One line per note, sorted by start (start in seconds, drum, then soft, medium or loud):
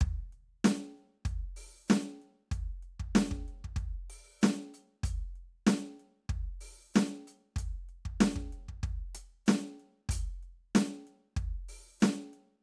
0.01 kick loud
0.01 closed hi-hat soft
0.32 closed hi-hat soft
0.64 closed hi-hat loud
0.64 snare loud
0.98 closed hi-hat soft
1.25 closed hi-hat soft
1.25 kick medium
1.56 open hi-hat medium
1.88 snare loud
1.88 closed hi-hat soft
1.88 hi-hat pedal medium
2.22 closed hi-hat soft
2.51 kick medium
2.51 closed hi-hat medium
2.83 closed hi-hat soft
2.99 kick medium
3.15 closed hi-hat medium
3.15 snare loud
3.31 kick medium
3.48 closed hi-hat soft
3.64 kick soft
3.76 kick medium
3.76 closed hi-hat soft
4.10 open hi-hat medium
4.41 closed hi-hat medium
4.41 snare loud
4.41 hi-hat pedal medium
4.74 closed hi-hat soft
5.03 closed hi-hat medium
5.03 kick medium
5.36 closed hi-hat soft
5.67 closed hi-hat medium
5.67 snare loud
5.99 closed hi-hat soft
6.29 kick medium
6.29 closed hi-hat soft
6.61 open hi-hat medium
6.94 snare loud
6.94 closed hi-hat soft
6.94 hi-hat pedal medium
7.27 closed hi-hat soft
7.56 kick medium
7.56 closed hi-hat medium
7.89 closed hi-hat soft
8.05 kick medium
8.20 snare loud
8.20 closed hi-hat medium
8.36 kick medium
8.52 closed hi-hat soft
8.68 kick soft
8.83 kick medium
8.83 closed hi-hat soft
9.15 open hi-hat loud
9.46 closed hi-hat medium
9.46 snare loud
9.46 hi-hat pedal medium
9.79 closed hi-hat soft
10.09 closed hi-hat loud
10.09 kick medium
10.43 closed hi-hat soft
10.75 closed hi-hat loud
10.75 snare loud
11.07 closed hi-hat soft
11.36 kick medium
11.36 closed hi-hat soft
11.69 open hi-hat medium
12.00 closed hi-hat medium
12.00 snare loud
12.00 hi-hat pedal medium
12.33 closed hi-hat soft